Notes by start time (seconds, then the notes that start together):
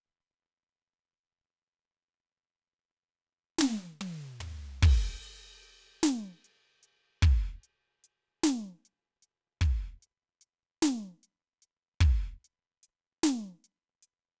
3.58 snare
3.61 snare
4.01 high tom
4.40 floor tom
4.83 kick, ride, crash
5.22 closed hi-hat
5.63 closed hi-hat
6.03 snare, closed hi-hat
6.44 closed hi-hat
6.83 closed hi-hat
7.22 kick, closed hi-hat
7.63 closed hi-hat
8.04 closed hi-hat
8.44 snare, closed hi-hat
8.85 closed hi-hat
9.22 closed hi-hat
9.61 kick, closed hi-hat
10.02 closed hi-hat
10.41 closed hi-hat
10.82 snare, closed hi-hat
11.23 closed hi-hat
11.62 closed hi-hat
12.01 kick, closed hi-hat
12.44 closed hi-hat
12.83 closed hi-hat
13.23 snare, closed hi-hat
13.64 closed hi-hat
14.03 closed hi-hat